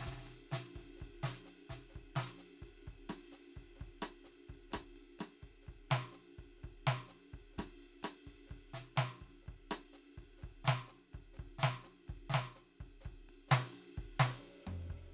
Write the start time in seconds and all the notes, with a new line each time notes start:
0.01 snare, ride
0.06 kick, snare
0.12 kick, snare
0.18 snare
0.23 snare
0.27 snare, ride
0.30 snare
0.51 snare, hi-hat pedal, ride
0.76 kick, snare, ride
0.81 kick, snare
0.97 hi-hat pedal
1.01 kick, ride
1.08 kick
1.24 snare, ride
1.46 hi-hat pedal, ride
1.70 kick, snare, ride
1.77 kick
1.90 hi-hat pedal
1.95 kick, ride
2.01 kick
2.16 snare, ride
2.39 hi-hat pedal, ride
2.62 kick, ride
2.68 kick
2.82 hi-hat pedal
2.88 kick, ride
2.94 kick
3.10 cross-stick, ride
3.32 hi-hat pedal, ride
3.57 kick, ride
3.63 kick
3.76 hi-hat pedal
3.80 kick, ride
3.87 kick
4.03 cross-stick, ride
4.25 hi-hat pedal, ride
4.31 snare
4.49 kick, ride
4.55 kick
4.71 cross-stick, hi-hat pedal, ride
4.76 kick
4.81 kick
4.97 ride
5.19 cross-stick, hi-hat pedal, ride
5.43 kick, ride
5.48 kick
5.63 hi-hat pedal
5.67 kick, ride
5.74 kick
5.91 snare, ride
6.13 hi-hat pedal, ride
6.39 kick, ride
6.44 kick
6.58 hi-hat pedal
6.64 kick, ride
6.70 kick
6.87 snare, ride
6.93 cross-stick
7.09 hi-hat pedal, ride
7.34 kick, ride
7.39 kick
7.53 hi-hat pedal
7.59 kick, cross-stick, ride
7.64 kick
8.03 cross-stick, hi-hat pedal, ride
8.27 kick, snare, ride
8.32 kick
8.47 hi-hat pedal, ride
8.51 kick
8.57 kick
8.74 snare, ride
8.96 snare, hi-hat pedal, ride
9.20 kick, ride
9.27 kick, snare
9.33 snare
9.43 hi-hat pedal
9.47 kick, ride
9.54 kick
9.71 cross-stick, ride
9.93 hi-hat pedal, ride
10.18 kick, ride
10.23 kick
10.39 hi-hat pedal
10.43 kick, ride
10.50 kick
10.65 snare
10.68 snare
10.88 hi-hat pedal, ride
11.14 kick, ride
11.20 kick
11.34 hi-hat pedal, ride
11.40 kick
11.45 kick
11.59 snare
11.64 snare
11.84 snare, hi-hat pedal, ride
11.88 snare
12.09 kick, ride
12.30 snare
12.34 snare
12.56 hi-hat pedal, ride
12.71 snare
12.81 kick, ride
12.86 kick
13.01 hi-hat pedal
13.06 kick, ride
13.12 kick
13.29 ride
13.49 snare, hi-hat pedal, ride
13.74 ride
13.80 snare
13.88 snare
13.98 kick, ride
14.05 kick
14.20 snare, hi-hat pedal, ride
14.29 snare
14.44 ride
14.67 kick, mid tom
14.90 kick
14.96 kick
15.04 snare